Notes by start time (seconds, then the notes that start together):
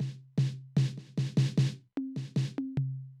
0.00 snare, floor tom
0.38 snare, floor tom
0.77 snare, floor tom
0.98 snare
1.18 snare
1.37 snare
1.58 snare
1.97 high tom
2.16 snare
2.36 snare
2.58 high tom
2.77 floor tom